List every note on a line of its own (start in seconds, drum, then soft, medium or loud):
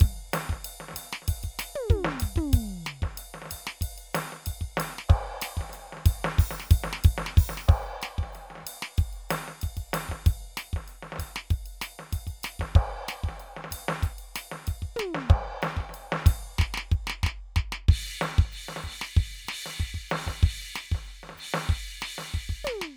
0.01 kick loud
0.01 ride loud
0.30 kick soft
0.30 hi-hat pedal medium
0.34 snare loud
0.34 ride loud
0.50 kick medium
0.50 snare soft
0.65 ride loud
0.81 snare medium
0.89 snare soft
0.92 kick soft
0.92 snare soft
0.95 snare soft
0.95 hi-hat pedal medium
0.95 ride loud
1.14 snare loud
1.23 snare soft
1.29 kick medium
1.29 ride loud
1.44 kick medium
1.44 ride medium
1.60 snare loud
1.60 hi-hat pedal medium
1.60 ride loud
1.76 high tom loud
1.90 kick loud
1.90 hi-hat pedal medium
1.90 mid tom loud
2.05 snare loud
2.20 kick medium
2.20 hi-hat pedal medium
2.20 ride loud
2.37 kick medium
2.37 floor tom loud
2.54 kick loud
2.54 hi-hat pedal soft
2.54 ride loud
2.86 snare loud
2.86 hi-hat pedal medium
3.03 kick medium
3.03 snare medium
3.18 hi-hat pedal medium
3.18 ride loud
3.35 snare medium
3.43 snare soft
3.46 snare soft
3.51 kick soft
3.51 hi-hat pedal medium
3.51 ride loud
3.68 snare loud
3.82 kick medium
3.82 ride loud
3.99 ride medium
4.14 kick soft
4.14 snare loud
4.14 hi-hat pedal medium
4.14 ride loud
4.33 snare soft
4.47 kick medium
4.47 ride loud
4.62 kick medium
4.78 snare loud
4.78 hi-hat pedal medium
4.78 ride loud
4.99 snare loud
5.08 kick loud
5.08 hi-hat pedal soft
5.08 crash loud
5.39 kick soft
5.39 snare loud
5.39 hi-hat pedal medium
5.39 ride loud
5.58 kick medium
5.58 snare soft
5.70 snare soft
5.70 hi-hat pedal medium
5.70 ride medium
5.76 snare soft
5.93 snare soft
5.98 snare soft
6.07 kick loud
6.07 hi-hat pedal medium
6.07 ride loud
6.25 snare loud
6.39 open hi-hat loud
6.39 kick loud
6.52 snare medium
6.61 snare medium
6.72 kick loud
6.72 ride loud
6.85 snare medium
6.94 snare loud
7.05 kick loud
7.05 hi-hat pedal soft
7.05 ride loud
7.19 snare loud
7.27 snare loud
7.38 open hi-hat loud
7.38 kick loud
7.50 snare medium
7.58 snare medium
7.69 kick loud
7.69 crash loud
8.03 snare loud
8.03 hi-hat pedal medium
8.03 ride medium
8.19 kick medium
8.24 snare soft
8.33 snare soft
8.33 hi-hat pedal medium
8.33 ride soft
8.51 snare soft
8.56 snare soft
8.59 snare soft
8.63 kick soft
8.63 hi-hat pedal medium
8.68 ride loud
8.83 snare loud
8.99 kick loud
8.99 ride medium
9.14 ride soft
9.30 snare loud
9.30 hi-hat pedal medium
9.30 ride loud
9.49 snare medium
9.62 kick medium
9.62 ride medium
9.78 kick medium
9.78 ride medium
9.94 snare loud
9.94 hi-hat pedal medium
9.94 ride loud
10.10 kick medium
10.10 snare medium
10.27 kick loud
10.27 ride loud
10.58 snare loud
10.58 hi-hat pedal medium
10.58 ride medium
10.74 kick medium
10.74 snare soft
10.89 hi-hat pedal medium
10.89 ride medium
11.03 snare medium
11.13 snare medium
11.17 kick medium
11.17 snare medium
11.17 hi-hat pedal medium
11.17 ride loud
11.37 snare loud
11.51 kick medium
11.51 ride medium
11.66 ride medium
11.82 snare loud
11.82 hi-hat pedal medium
11.82 ride loud
12.00 snare medium
12.13 kick medium
12.13 ride medium
12.28 kick medium
12.28 ride soft
12.43 snare loud
12.43 hi-hat pedal medium
12.43 ride loud
12.60 kick medium
12.60 snare medium
12.76 kick loud
12.76 crash loud
13.09 snare loud
13.09 hi-hat pedal medium
13.09 ride medium
13.24 kick medium
13.30 snare soft
13.40 hi-hat pedal medium
13.40 ride soft
13.57 snare medium
13.65 snare medium
13.71 kick soft
13.71 hi-hat pedal medium
13.71 ride loud
13.89 snare loud
14.03 kick medium
14.03 ride medium
14.19 ride medium
14.36 snare loud
14.36 hi-hat pedal medium
14.36 ride loud
14.52 snare medium
14.68 kick medium
14.68 ride medium
14.83 kick medium
14.97 snare loud
14.97 hi-hat pedal medium
14.97 mid tom loud
15.15 snare loud
15.30 kick loud
15.30 crash loud
15.63 snare loud
15.63 hi-hat pedal medium
15.63 ride soft
15.78 kick medium
15.78 snare soft
15.90 snare soft
15.94 hi-hat pedal medium
15.94 ride medium
16.13 snare loud
16.23 kick loud
16.23 snare soft
16.27 ride loud
16.59 kick loud
16.59 snare loud
16.59 hi-hat pedal soft
16.62 snare loud
16.75 snare loud
16.78 snare loud
16.92 kick loud
16.92 hi-hat pedal medium
17.08 snare loud
17.11 snare loud
17.24 kick medium
17.24 snare loud
17.27 snare loud
17.57 kick medium
17.57 snare loud
17.73 snare loud
17.89 kick loud
17.89 crash loud
18.22 snare loud
18.22 hi-hat pedal medium
18.39 kick loud
18.46 snare soft
18.51 hi-hat pedal medium
18.51 crash loud
18.69 snare medium
18.77 snare medium
18.83 kick soft
18.83 hi-hat pedal soft
18.83 crash loud
19.02 snare loud
19.17 kick loud
19.17 crash medium
19.33 crash soft
19.46 kick soft
19.46 snare loud
19.46 hi-hat pedal medium
19.46 crash loud
19.67 snare medium
19.81 kick medium
19.81 crash medium
19.95 kick medium
19.95 crash soft
20.10 snare loud
20.10 hi-hat pedal medium
20.10 crash loud
20.28 kick medium
20.28 snare medium
20.44 kick loud
20.44 crash loud
20.75 snare loud
20.75 hi-hat pedal medium
20.75 crash medium
20.92 kick medium
20.92 snare soft
21.06 hi-hat pedal soft
21.06 crash soft
21.24 snare soft
21.30 snare soft
21.35 kick soft
21.35 hi-hat pedal medium
21.35 crash loud
21.55 snare loud
21.70 kick medium
21.70 crash medium
21.85 crash soft
21.99 kick soft
21.99 snare loud
21.99 hi-hat pedal medium
21.99 crash loud
22.19 snare medium
22.34 kick medium
22.34 crash medium
22.50 kick medium
22.65 snare loud
22.65 hi-hat pedal medium
22.65 high tom loud
22.82 snare loud